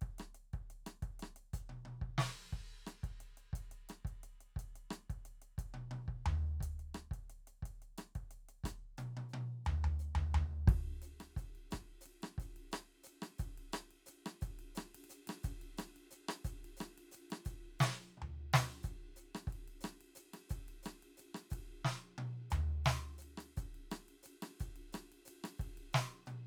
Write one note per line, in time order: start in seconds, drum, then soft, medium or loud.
0.01 kick medium
0.01 closed hi-hat soft
0.18 cross-stick medium
0.18 closed hi-hat soft
0.34 closed hi-hat soft
0.53 kick medium
0.53 closed hi-hat soft
0.70 closed hi-hat soft
0.86 cross-stick medium
0.86 closed hi-hat medium
1.02 kick medium
1.02 closed hi-hat soft
1.19 cross-stick medium
1.19 closed hi-hat soft
1.36 closed hi-hat soft
1.53 closed hi-hat medium
1.53 kick medium
1.69 high tom medium
1.85 high tom medium
1.90 high tom soft
2.01 kick medium
2.18 snare loud
2.18 crash medium
2.52 kick medium
2.87 cross-stick medium
2.87 closed hi-hat soft
3.03 kick medium
3.03 closed hi-hat soft
3.20 closed hi-hat soft
3.37 closed hi-hat soft
3.53 kick medium
3.53 closed hi-hat medium
3.71 closed hi-hat soft
3.89 cross-stick medium
3.89 closed hi-hat medium
4.05 kick medium
4.05 closed hi-hat soft
4.23 closed hi-hat soft
4.40 closed hi-hat soft
4.56 kick medium
4.56 closed hi-hat medium
4.75 closed hi-hat soft
4.90 cross-stick medium
4.90 closed hi-hat soft
5.10 kick medium
5.10 closed hi-hat soft
5.25 closed hi-hat soft
5.42 closed hi-hat soft
5.58 kick medium
5.58 closed hi-hat medium
5.74 high tom medium
5.91 high tom medium
6.08 kick medium
6.26 floor tom loud
6.60 kick medium
6.60 closed hi-hat medium
6.79 closed hi-hat soft
6.94 cross-stick medium
6.94 closed hi-hat soft
7.11 kick medium
7.11 closed hi-hat soft
7.30 closed hi-hat soft
7.47 closed hi-hat soft
7.62 kick soft
7.62 closed hi-hat soft
7.82 closed hi-hat soft
7.98 cross-stick medium
7.98 closed hi-hat medium
8.15 kick soft
8.15 closed hi-hat soft
8.31 closed hi-hat soft
8.49 closed hi-hat soft
8.64 closed hi-hat medium
8.64 kick medium
8.64 cross-stick medium
8.97 hi-hat pedal soft
8.97 high tom medium
9.17 high tom medium
9.29 hi-hat pedal soft
9.33 high tom loud
9.65 floor tom loud
9.65 hi-hat pedal soft
9.84 floor tom loud
9.99 hi-hat pedal soft
10.15 floor tom loud
10.34 floor tom loud
10.67 kick loud
10.67 ride medium
11.02 hi-hat pedal medium
11.02 ride soft
11.20 cross-stick soft
11.20 ride soft
11.36 kick medium
11.36 hi-hat pedal soft
11.36 ride soft
11.55 ride soft
11.71 kick soft
11.71 cross-stick medium
11.71 hi-hat pedal soft
11.71 ride soft
12.01 hi-hat pedal medium
12.06 ride soft
12.22 cross-stick medium
12.22 ride soft
12.38 kick medium
12.38 hi-hat pedal soft
12.38 ride soft
12.56 ride soft
12.71 cross-stick medium
12.71 hi-hat pedal soft
12.71 ride soft
13.03 hi-hat pedal medium
13.03 ride soft
13.22 cross-stick medium
13.22 ride soft
13.38 kick medium
13.38 hi-hat pedal medium
13.38 ride soft
13.58 ride soft
13.72 cross-stick medium
13.72 hi-hat pedal medium
13.72 ride soft
13.91 ride soft
14.06 hi-hat pedal medium
14.06 ride soft
14.26 cross-stick medium
14.26 ride soft
14.41 kick medium
14.41 hi-hat pedal medium
14.41 ride soft
14.59 ride soft
14.75 cross-stick medium
14.75 hi-hat pedal medium
14.75 ride medium
14.95 ride medium
15.04 ride soft
15.09 hi-hat pedal medium
15.09 ride soft
15.27 cross-stick medium
15.27 ride medium
15.43 kick medium
15.43 hi-hat pedal medium
15.43 ride soft
15.61 ride soft
15.77 cross-stick medium
15.77 hi-hat pedal medium
15.77 ride medium
15.96 ride soft
16.11 hi-hat pedal medium
16.11 ride soft
16.28 cross-stick medium
16.28 ride medium
16.44 kick medium
16.44 hi-hat pedal medium
16.44 ride soft
16.64 ride soft
16.77 cross-stick medium
16.77 hi-hat pedal medium
16.81 ride medium
16.98 ride soft
17.11 hi-hat pedal medium
17.11 ride soft
17.30 cross-stick medium
17.30 ride soft
17.45 kick medium
17.45 hi-hat pedal medium
17.45 ride soft
17.79 snare loud
17.79 hi-hat pedal medium
18.17 high tom soft
18.22 floor tom medium
18.53 snare loud
18.53 ride medium
18.83 kick medium
18.83 hi-hat pedal medium
18.88 ride soft
19.16 hi-hat pedal medium
19.16 ride soft
19.35 cross-stick medium
19.35 ride soft
19.47 kick medium
19.47 hi-hat pedal soft
19.52 ride soft
19.68 ride soft
19.81 cross-stick medium
19.81 hi-hat pedal medium
19.85 ride soft
20.01 ride soft
20.15 hi-hat pedal medium
20.15 ride soft
20.33 cross-stick soft
20.33 ride soft
20.49 kick medium
20.49 hi-hat pedal medium
20.49 ride soft
20.68 ride soft
20.83 cross-stick medium
20.83 hi-hat pedal medium
20.83 ride medium
21.02 ride soft
21.17 hi-hat pedal medium
21.17 ride soft
21.34 cross-stick medium
21.34 ride soft
21.50 kick medium
21.50 hi-hat pedal medium
21.50 ride medium
21.85 snare medium
22.18 high tom loud
22.50 floor tom loud
22.50 hi-hat pedal medium
22.84 snare loud
22.84 hi-hat pedal soft
22.84 ride soft
23.18 hi-hat pedal medium
23.22 ride soft
23.37 cross-stick medium
23.37 ride soft
23.57 kick medium
23.57 hi-hat pedal medium
23.57 ride soft
23.74 ride soft
23.91 cross-stick medium
23.91 hi-hat pedal soft
23.91 ride medium
24.08 ride soft
24.23 hi-hat pedal medium
24.23 ride soft
24.42 cross-stick medium
24.42 ride medium
24.59 kick medium
24.59 hi-hat pedal medium
24.59 ride soft
24.76 ride soft
24.92 cross-stick medium
24.92 hi-hat pedal medium
24.92 ride medium
25.12 ride soft
25.25 hi-hat pedal medium
25.25 ride medium
25.44 cross-stick medium
25.44 ride medium
25.58 kick medium
25.58 hi-hat pedal soft
25.58 ride soft
25.77 ride soft
25.93 snare medium
25.93 hi-hat pedal medium
26.26 hi-hat pedal soft
26.26 high tom medium